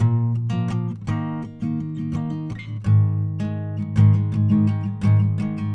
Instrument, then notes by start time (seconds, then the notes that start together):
acoustic guitar
0.00 A#2 D#3
0.36 F3
0.50 A#2 F3 A#3
0.69 A#2 F3 A#3
1.08 D#3 A#3
1.44 D#3 A#3
1.63 D#3 A#3
1.81 A#3
1.98 D#3 A#3 D#4
2.15 D#3 A#3 D#4
2.31 A#3 D#4
2.51 A2
2.60 D3
2.86 G#2 D#3 G#3
3.41 G#2 D#3 G#3
3.77 D#3 G#3
3.81 G#2
3.97 G#2 D#3 G#3
4.15 D#3 G#3
4.19 G#2
4.33 G#2 D#3 G#3
4.51 G#2 D#3 G#3
4.68 D#3 G#3
4.84 G#2 D#3 G#3
5.03 G#2 D#3 G#3
5.20 D#3 G#3
5.25 G#2
5.39 G#2 D#3 G#3
5.59 G#2 D#3